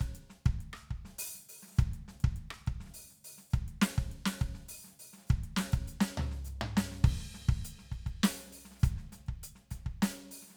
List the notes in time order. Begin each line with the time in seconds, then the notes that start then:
0.01 kick, closed hi-hat
0.15 closed hi-hat
0.30 snare
0.46 kick, closed hi-hat
0.61 closed hi-hat
0.73 cross-stick
0.91 kick
1.05 snare
1.08 snare
1.19 open hi-hat
1.35 snare
1.38 snare
1.43 snare
1.49 open hi-hat
1.63 snare
1.68 snare
1.71 snare
1.74 snare, hi-hat pedal
1.79 kick, closed hi-hat
1.94 closed hi-hat
2.08 snare
2.20 kick, closed hi-hat
2.36 closed hi-hat
2.51 cross-stick
2.67 kick, closed hi-hat
2.81 snare
2.84 snare
2.86 snare
2.94 open hi-hat
3.10 snare
3.17 snare
3.25 open hi-hat
3.38 snare
3.50 kick, hi-hat pedal
3.55 closed hi-hat
3.68 closed hi-hat
3.82 snare
3.96 kick, closed hi-hat
4.12 closed hi-hat
4.26 snare
4.33 snare
4.41 kick, closed hi-hat
4.55 snare
4.59 snare
4.66 open hi-hat, snare
4.84 snare
4.87 snare
5.00 open hi-hat
5.13 snare
5.18 snare
5.21 snare
5.25 snare, hi-hat pedal
5.30 kick, snare, closed hi-hat
5.44 closed hi-hat
5.57 snare
5.59 snare
5.73 kick, closed hi-hat
5.88 closed hi-hat
6.01 snare
6.18 floor tom
6.31 snare
6.45 snare, hi-hat pedal
6.62 mid tom
6.77 snare
6.92 snare
6.95 snare
7.04 kick, crash
7.20 snare
7.35 snare
7.49 kick
7.65 closed hi-hat
7.79 snare
7.92 kick, closed hi-hat
8.06 kick, closed hi-hat
8.24 open hi-hat, snare
8.53 open hi-hat
8.65 snare
8.71 snare
8.75 snare
8.80 kick, hi-hat pedal
8.84 closed hi-hat
8.98 snare
9.12 closed hi-hat, snare
9.27 kick, closed hi-hat
9.44 closed hi-hat
9.56 snare
9.71 closed hi-hat, kick, snare
9.86 kick, closed hi-hat
10.02 open hi-hat, snare
10.31 open hi-hat
10.42 snare
10.47 snare
10.50 snare
10.53 snare